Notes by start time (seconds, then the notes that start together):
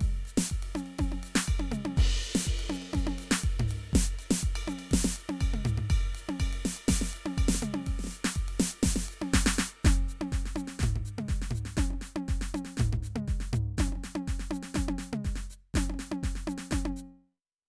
0.01 kick, hi-hat pedal, ride
0.26 hi-hat pedal, ride
0.38 snare
0.50 kick, hi-hat pedal, ride
0.63 ride
0.75 hi-hat pedal, high tom
0.86 ride
0.99 kick, hi-hat pedal, high tom, ride
1.12 high tom
1.23 hi-hat pedal, ride
1.36 snare
1.48 kick, hi-hat pedal, ride bell
1.60 high tom
1.69 kick, hi-hat pedal, mid tom
1.85 high tom
1.97 kick, hi-hat pedal, ride
2.23 hi-hat pedal, ride
2.35 snare
2.47 kick, hi-hat pedal, ride
2.60 ride
2.70 hi-hat pedal, high tom
2.82 ride
2.94 kick, hi-hat pedal, high tom, ride
3.07 high tom
3.19 hi-hat pedal, ride
3.31 snare
3.43 kick, hi-hat pedal, ride
3.60 floor tom
3.68 hi-hat pedal, ride
3.93 kick, snare, hi-hat pedal, ride
4.19 hi-hat pedal, ride bell
4.31 snare
4.43 kick, hi-hat pedal, ride
4.56 ride bell
4.68 hi-hat pedal, high tom
4.79 ride bell
4.91 kick, snare, hi-hat pedal, ride
5.05 snare
5.16 hi-hat pedal, ride
5.29 high tom
5.41 kick, hi-hat pedal, ride bell
5.54 mid tom
5.63 kick, floor tom, hi-hat pedal
5.78 floor tom
5.90 kick, hi-hat pedal, ride bell
6.15 hi-hat pedal, ride
6.29 high tom
6.40 kick, hi-hat pedal, ride bell
6.53 ride
6.65 snare, hi-hat pedal
6.77 ride bell
6.89 kick, snare, hi-hat pedal, ride bell
7.02 snare
7.13 hi-hat pedal, ride
7.26 high tom
7.37 kick, hi-hat pedal, ride bell
7.49 snare
7.55 snare
7.62 hi-hat pedal, mid tom
7.74 high tom
7.86 kick, hi-hat pedal, ride
7.99 snare
8.04 snare
8.07 snare
8.11 hi-hat pedal, ride
8.25 snare
8.36 kick, hi-hat pedal, ride
8.48 ride
8.60 snare, hi-hat pedal
8.71 ride
8.83 kick, snare, hi-hat pedal, ride
8.96 snare
9.09 hi-hat pedal, ride
9.22 high tom
9.33 kick, snare, hi-hat pedal
9.46 snare
9.57 snare, hi-hat pedal
9.83 kick, snare, hi-hat pedal, high tom
10.09 hi-hat pedal
10.21 high tom
10.32 kick, snare, hi-hat pedal
10.46 snare
10.56 hi-hat pedal, high tom
10.68 snare
10.80 kick, snare, hi-hat pedal
10.83 snare, floor tom
10.96 floor tom
11.05 hi-hat pedal
11.19 mid tom
11.29 kick, snare, hi-hat pedal
11.42 snare
11.51 floor tom, hi-hat pedal
11.65 snare
11.77 kick, snare, hi-hat pedal, high tom
11.91 high tom
11.93 high tom
12.02 snare, hi-hat pedal
12.16 high tom
12.28 kick, snare, hi-hat pedal
12.41 snare
12.55 hi-hat pedal, high tom
12.65 snare
12.77 kick, snare, floor tom, hi-hat pedal
12.93 floor tom
13.03 snare, hi-hat pedal
13.16 mid tom
13.28 kick, snare, hi-hat pedal
13.40 snare
13.53 floor tom, hi-hat pedal
13.78 kick, snare, hi-hat pedal, high tom
13.88 high tom
13.93 high tom
13.96 high tom
14.04 snare, hi-hat pedal
14.16 high tom
14.28 kick, snare, hi-hat pedal
14.40 snare
14.51 hi-hat pedal, high tom
14.63 snare
14.75 kick, snare, hi-hat pedal, high tom
14.89 high tom
14.99 snare, hi-hat pedal
15.13 mid tom
15.25 kick, snare, hi-hat pedal
15.36 snare
15.50 hi-hat pedal
15.74 kick, snare, hi-hat pedal, high tom
15.90 high tom
15.94 high tom
15.99 snare, hi-hat pedal
16.12 high tom
16.23 kick, snare, hi-hat pedal
16.36 snare
16.48 hi-hat pedal, high tom
16.58 snare
16.71 kick, snare, hi-hat pedal, high tom
16.86 high tom
16.97 hi-hat pedal